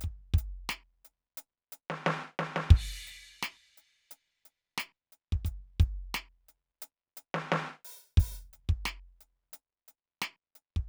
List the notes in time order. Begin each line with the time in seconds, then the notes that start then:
0.01 closed hi-hat, kick
0.34 kick, snare
0.38 closed hi-hat
0.69 closed hi-hat, snare
1.05 closed hi-hat
1.37 closed hi-hat
1.72 closed hi-hat
1.90 snare
2.06 snare
2.39 snare
2.56 snare
2.71 kick, snare, crash
3.07 closed hi-hat
3.43 closed hi-hat, snare
3.78 closed hi-hat
4.11 closed hi-hat
4.45 closed hi-hat
4.78 closed hi-hat, snare
5.12 closed hi-hat
5.32 kick
5.45 closed hi-hat, kick
5.80 kick, closed hi-hat
6.14 closed hi-hat, snare
6.49 closed hi-hat
6.82 closed hi-hat
7.17 closed hi-hat
7.34 snare
7.52 snare
7.85 open hi-hat
8.17 open hi-hat, kick
8.53 closed hi-hat
8.69 kick
8.86 closed hi-hat, snare
9.21 closed hi-hat
9.53 closed hi-hat
9.88 closed hi-hat
10.22 snare, closed hi-hat
10.55 closed hi-hat
10.76 kick